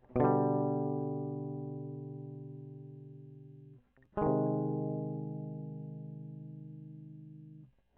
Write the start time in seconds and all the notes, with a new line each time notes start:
0.17 B2 D3
0.24 G3
4.17 G#3
4.22 D#3
4.27 C3